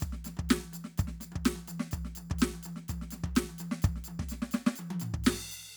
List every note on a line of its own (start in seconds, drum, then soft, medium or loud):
0.01 kick medium
0.01 high tom medium
0.01 percussion medium
0.13 snare soft
0.25 snare soft
0.25 high tom medium
0.25 percussion medium
0.38 kick medium
0.38 high tom medium
0.50 snare loud
0.50 percussion medium
0.61 high tom medium
0.73 high tom medium
0.73 percussion medium
0.85 snare medium
0.98 kick loud
0.98 high tom medium
0.98 percussion medium
1.08 snare soft
1.21 snare soft
1.21 high tom medium
1.21 percussion medium
1.33 kick medium
1.33 high tom medium
1.46 snare loud
1.46 percussion medium
1.56 high tom medium
1.68 high tom medium
1.68 percussion medium
1.80 snare medium
1.92 kick medium
1.92 high tom medium
1.92 percussion medium
2.06 snare soft
2.16 high tom medium
2.16 percussion medium
2.31 kick medium
2.31 high tom medium
2.39 snare loud
2.39 percussion medium
2.54 high tom medium
2.64 high tom medium
2.64 percussion medium
2.77 snare soft
2.89 kick medium
2.89 high tom medium
2.89 percussion medium
3.02 snare soft
3.11 snare soft
3.11 high tom medium
3.11 percussion medium
3.24 kick medium
3.24 high tom medium
3.36 snare loud
3.36 percussion medium
3.50 high tom medium
3.59 high tom medium
3.59 percussion medium
3.72 snare medium
3.83 kick loud
3.83 high tom medium
3.83 percussion medium
3.97 snare soft
4.05 high tom medium
4.05 percussion medium
4.20 kick medium
4.20 snare soft
4.29 snare medium
4.29 percussion medium
4.43 snare medium
4.52 snare loud
4.52 percussion medium
4.67 snare loud
4.76 high tom medium
4.76 percussion medium
4.91 high tom loud
5.00 floor tom medium
5.00 percussion medium
5.15 kick medium
5.25 snare loud
5.25 crash loud
5.25 percussion medium
5.52 percussion medium